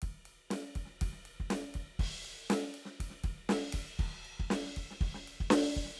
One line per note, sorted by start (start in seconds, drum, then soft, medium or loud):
0.02 kick medium
0.02 ride medium
0.25 hi-hat pedal soft
0.25 ride medium
0.50 snare loud
0.50 ride medium
0.75 kick medium
0.75 ride medium
0.86 snare soft
0.92 snare soft
1.01 kick medium
1.01 ride medium
1.12 snare soft
1.18 snare soft
1.25 ride medium
1.40 kick medium
1.50 snare loud
1.50 ride loud
1.74 kick soft
1.74 ride medium
1.99 kick medium
1.99 ride medium
2.24 hi-hat pedal soft
2.24 ride medium
2.50 snare loud
2.50 ride loud
2.74 hi-hat pedal soft
2.74 ride medium
2.85 snare soft
3.00 kick soft
3.00 ride medium
3.10 snare soft
3.24 kick medium
3.24 ride medium
3.49 snare loud
3.49 ride medium
3.73 kick medium
3.73 hi-hat pedal soft
3.73 ride loud
3.99 kick medium
3.99 crash medium
4.25 ride soft
4.39 kick medium
4.50 snare loud
4.50 ride medium
4.65 snare soft
4.76 kick soft
4.76 ride medium
4.91 snare soft
5.01 kick medium
5.01 ride medium
5.14 snare soft
5.28 ride medium
5.40 kick medium
5.50 snare loud
5.50 ride loud
5.76 kick medium
5.76 ride medium
5.85 snare soft
5.89 snare soft
5.94 snare soft